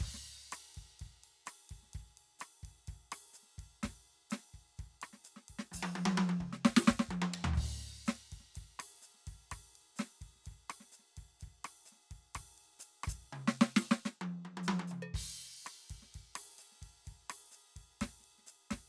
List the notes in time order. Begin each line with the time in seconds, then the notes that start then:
0.01 kick, crash
0.09 kick
0.14 snare
0.52 cross-stick, hi-hat pedal, ride
0.75 kick, ride
0.99 kick, hi-hat pedal, ride
1.07 kick
1.24 ride
1.46 cross-stick, hi-hat pedal, ride
1.70 kick, ride
1.83 snare
1.87 snare
1.93 kick, hi-hat pedal, ride
2.01 kick
2.18 ride
2.39 cross-stick, hi-hat pedal, ride
2.63 kick, ride
2.69 kick
2.87 kick, hi-hat pedal, ride
2.94 kick
3.12 cross-stick, ride
3.34 hi-hat pedal, ride
3.43 snare
3.59 kick, ride
3.64 kick
3.82 kick, snare, hi-hat pedal, ride
3.90 kick
4.30 snare, hi-hat pedal, ride
4.54 kick, ride
4.77 kick, hi-hat pedal, ride
5.02 cross-stick, ride
5.13 snare
5.25 hi-hat pedal, ride
5.37 snare
5.49 kick, ride
5.59 snare
5.72 kick, hi-hat pedal, high tom
5.83 high tom
5.96 high tom
6.06 high tom
6.18 high tom
6.30 high tom
6.41 kick, mid tom
6.53 snare
6.65 kick, snare
6.77 snare
6.88 kick, snare
6.95 kick
7.00 snare
7.09 kick, high tom
7.14 kick
7.22 high tom
7.34 floor tom
7.45 floor tom
7.54 kick, floor tom, hi-hat pedal
7.58 crash
7.66 kick
8.06 snare, hi-hat pedal, ride
8.32 kick, ride
8.40 snare
8.55 kick, hi-hat pedal, ride
8.62 kick
8.80 cross-stick, ride
9.02 hi-hat pedal
9.15 snare
9.27 kick, ride
9.33 kick
9.50 kick, cross-stick, hi-hat pedal, ride
9.57 kick
9.76 ride
9.96 snare, hi-hat pedal, ride
10.22 kick, ride
10.36 snare
10.44 kick, hi-hat pedal, ride
10.52 kick
10.70 cross-stick, ride
10.80 snare
10.92 hi-hat pedal, ride
10.99 snare
11.17 kick, ride
11.40 kick, hi-hat pedal, ride
11.48 kick
11.65 cross-stick, ride
11.86 hi-hat pedal, ride
11.92 snare
11.96 snare
12.11 kick, ride
12.34 kick, cross-stick, hi-hat pedal, ride
12.41 kick
12.58 ride
12.80 hi-hat pedal, ride
13.04 kick, cross-stick, ride
13.09 hi-hat pedal
13.14 kick
13.33 mid tom
13.48 snare
13.62 snare
13.77 snare
13.92 snare
14.06 snare
14.22 high tom
14.45 high tom
14.57 high tom
14.63 hi-hat pedal
14.69 high tom
14.80 high tom
14.88 hi-hat pedal, mid tom
15.03 percussion
15.14 kick, hi-hat pedal, crash
15.21 kick
15.65 cross-stick, hi-hat pedal, ride
15.90 kick, ride
16.02 snare
16.12 kick, hi-hat pedal, ride
16.21 kick
16.36 cross-stick, ride
16.59 hi-hat pedal, ride
16.72 snare
16.82 kick, ride
17.05 kick, hi-hat pedal, ride
17.12 kick
17.30 cross-stick, ride
17.52 hi-hat pedal, ride
17.76 kick, ride
18.01 kick, snare, ride
18.07 kick
18.20 snare
18.25 ride
18.38 snare
18.43 snare
18.47 hi-hat pedal, ride
18.71 kick, snare, ride